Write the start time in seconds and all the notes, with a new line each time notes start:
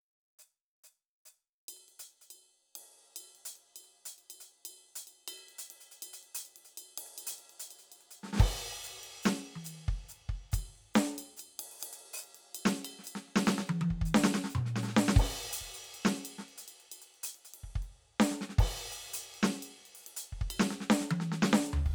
0.39 hi-hat pedal
0.84 hi-hat pedal
1.25 hi-hat pedal
1.68 ride bell
1.76 closed hi-hat
1.88 ride
1.99 closed hi-hat
2.10 ride
2.21 closed hi-hat
2.30 ride bell
2.75 ride
3.16 ride bell
3.35 ride
3.45 closed hi-hat
3.55 ride
3.76 ride bell
3.84 closed hi-hat
4.05 closed hi-hat
4.18 ride bell
4.30 ride bell
4.40 closed hi-hat
4.58 closed hi-hat
4.65 ride bell
4.75 closed hi-hat
4.95 closed hi-hat
5.07 ride bell
5.15 closed hi-hat
5.28 ride bell
5.37 closed hi-hat
5.48 ride
5.58 closed hi-hat
5.70 ride
5.80 closed hi-hat
5.91 closed hi-hat
6.02 ride bell
6.13 closed hi-hat
6.23 ride
6.35 closed hi-hat
6.45 ride bell
6.56 ride
6.65 closed hi-hat
6.77 ride bell
6.98 ride
7.06 closed hi-hat
7.18 ride bell
7.27 closed hi-hat
7.38 ride
7.49 ride
7.60 closed hi-hat
7.71 ride bell
7.79 closed hi-hat
7.92 ride bell
8.01 closed hi-hat
8.11 closed hi-hat
8.23 snare
8.26 snare
8.33 snare
8.36 kick, snare, crash
8.83 hi-hat pedal
9.03 ride
9.23 snare, hi-hat pedal
9.55 high tom
9.64 hi-hat pedal, ride bell
9.88 kick
10.09 hi-hat pedal, ride, floor tom
10.29 kick
10.52 kick, hi-hat pedal, ride bell
10.75 ride
10.94 snare, hi-hat pedal
11.18 ride bell
11.37 hi-hat pedal, ride bell
11.59 ride
11.71 open hi-hat
11.79 hi-hat pedal, ride
11.93 closed hi-hat
12.01 crash
12.13 open hi-hat
12.19 hi-hat pedal
12.24 ride
12.35 ride
12.54 ride bell
12.65 snare, hi-hat pedal
12.85 ride bell
12.99 snare
13.04 hi-hat pedal, ride bell
13.15 snare
13.28 snare
13.36 snare
13.46 snare, hi-hat pedal
13.58 snare
13.65 hi-hat pedal, high tom
13.81 high tom
13.90 kick
14.01 kick, hi-hat pedal
14.14 snare
14.24 snare
14.34 snare
14.44 snare
14.50 hi-hat pedal
14.55 mid tom
14.65 snare
14.76 snare
14.82 snare, hi-hat pedal
14.87 snare
14.91 snare
14.96 snare
15.08 snare
15.16 kick, crash
15.23 hi-hat pedal
15.30 closed hi-hat
15.43 ride bell
15.53 closed hi-hat
15.61 kick, ride bell
15.74 closed hi-hat
15.84 ride
15.94 ride bell
16.05 snare
16.25 ride bell
16.38 snare
16.48 ride
16.58 closed hi-hat
16.68 ride bell
16.80 closed hi-hat
16.92 ride bell
17.02 closed hi-hat
17.14 ride
17.23 closed hi-hat
17.34 ride
17.45 closed hi-hat
17.54 ride
17.63 kick
17.75 kick
17.82 mid tom, ride, floor tom
18.20 snare, hi-hat pedal
18.31 snare
18.41 snare
18.49 snare
18.58 kick, hi-hat pedal, crash
18.91 closed hi-hat
19.02 ride
19.13 closed hi-hat
19.24 ride
19.34 ride
19.43 snare
19.62 ride bell
19.85 ride bell
19.95 open hi-hat
20.06 ride
20.16 closed hi-hat
20.32 kick
20.41 kick
20.50 ride bell
20.59 snare
20.70 snare
20.80 snare
20.90 snare
21.00 snare
21.11 high tom
21.20 snare
21.32 snare
21.42 snare
21.53 snare
21.66 crash
21.73 floor tom
21.86 kick, crash